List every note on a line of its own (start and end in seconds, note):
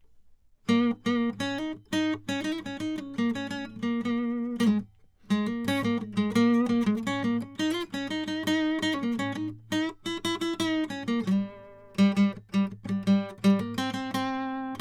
0.70 0.97 A#3
1.07 1.33 A#3
1.41 1.59 C#4
1.59 1.81 D#4
1.94 2.19 D#4
2.29 2.46 C#4
2.46 2.63 E4
2.67 2.81 C#4
2.81 2.96 D#4
2.97 3.22 C#4
3.19 3.35 A#3
3.36 3.49 C#4
3.52 3.68 C#4
3.84 4.04 A#3
4.07 4.48 A#3
4.61 4.68 A#3
4.69 4.84 G#3
5.31 5.47 G#3
5.48 5.70 A#3
5.69 5.88 C#4
5.86 5.99 A#3
5.99 6.16 G#3
6.18 6.34 G#3
6.36 6.66 A#3
6.71 6.85 A#3
6.88 6.99 G#3
7.08 7.31 C#4
7.25 7.46 A#3
7.42 7.56 C#4
7.60 7.88 E4
7.95 8.10 C#4
8.12 8.26 D#4
8.29 8.45 D#4
8.48 8.81 D#4
8.84 8.95 D#4
8.95 9.10 C#4
9.04 9.20 A#3
9.20 9.34 C#4
9.37 9.55 D#4
9.73 9.94 D#4
10.07 10.21 E4
10.25 10.38 E4
10.42 10.57 E4
10.42 10.58 E4
10.60 10.87 D#4
10.60 10.71 E4
10.91 11.14 C#4
11.09 11.25 A#3
11.28 11.96 G3
11.99 12.15 G3
12.17 12.35 G3
12.55 12.69 G3
12.90 13.05 G3
13.08 13.35 G3
13.45 13.60 G3
13.60 13.79 A#3
13.79 13.92 C4
13.95 14.13 C4
14.16 14.78 C4